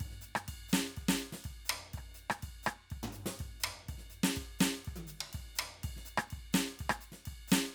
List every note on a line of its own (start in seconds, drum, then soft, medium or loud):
0.01 kick soft
0.01 ride bell medium
0.08 kick soft
0.08 snare soft
0.22 hi-hat pedal medium
0.22 ride soft
0.36 cross-stick medium
0.49 kick soft
0.49 ride bell medium
0.55 kick soft
0.69 hi-hat pedal medium
0.74 snare loud
0.91 hi-hat pedal soft
0.97 kick soft
0.97 ride bell medium
1.04 kick soft
1.09 snare medium
1.17 hi-hat pedal medium
1.17 ride soft
1.33 snare medium
1.45 kick soft
1.45 ride bell medium
1.52 kick soft
1.66 hi-hat pedal medium
1.70 floor tom loud
1.94 kick soft
1.94 ride bell medium
1.98 kick soft
1.98 cross-stick soft
2.15 hi-hat pedal medium
2.15 ride soft
2.31 cross-stick medium
2.43 kick soft
2.43 ride bell medium
2.49 kick soft
2.64 cross-stick medium
2.64 hi-hat pedal medium
2.91 kick soft
2.91 ride bell medium
2.98 kick soft
3.04 floor tom loud
3.13 hi-hat pedal medium
3.13 ride soft
3.27 snare medium
3.40 kick soft
3.40 ride bell medium
3.47 kick soft
3.61 hi-hat pedal medium
3.61 floor tom loud
3.89 kick soft
3.89 ride bell medium
3.95 kick soft
3.95 snare soft
4.11 hi-hat pedal medium
4.11 ride soft
4.24 snare medium
4.37 kick soft
4.37 ride bell medium
4.43 kick soft
4.60 snare loud
4.60 hi-hat pedal medium
4.85 kick soft
4.85 ride bell medium
4.94 kick soft
4.94 high tom medium
5.08 hi-hat pedal medium
5.08 ride medium
5.21 high tom loud
5.34 kick soft
5.34 ride bell medium
5.41 kick soft
5.56 hi-hat pedal medium
5.56 floor tom loud
5.84 kick soft
5.84 ride bell medium
5.92 kick soft
5.97 snare soft
6.06 hi-hat pedal medium
6.06 ride soft
6.18 cross-stick medium
6.27 hi-hat pedal soft
6.27 ride bell medium
6.33 kick soft
6.39 kick soft
6.54 snare loud
6.54 hi-hat pedal medium
6.75 hi-hat pedal soft
6.80 kick soft
6.80 ride bell medium
6.87 kick soft
6.87 cross-stick medium
7.01 hi-hat pedal medium
7.01 ride soft
7.13 snare soft
7.26 kick soft
7.26 ride bell medium
7.34 kick soft
7.48 hi-hat pedal medium
7.53 snare loud